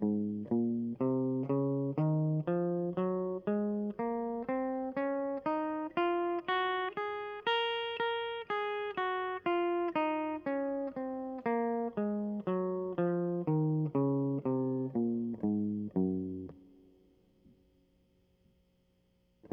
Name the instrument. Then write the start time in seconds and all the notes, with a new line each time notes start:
electric guitar
0.04 G#2
0.53 A#2
1.02 C3
1.51 C#3
1.99 D#3
2.49 F3
2.98 F#3
3.48 G#3
4.00 A#3
4.49 C4
4.97 C#4
5.47 D#4
5.98 F4
6.49 F#4
6.98 G#4
7.47 A#4
8.00 A#4
8.51 G#4
8.98 F#4
9.47 F4
9.96 D#4
10.47 C#4
10.97 C4
11.47 A#3
11.98 G#3
12.48 F#3
12.99 F3
13.49 D#3
13.96 C#3
14.47 C3
14.97 A#2
15.46 G#2
15.98 F#2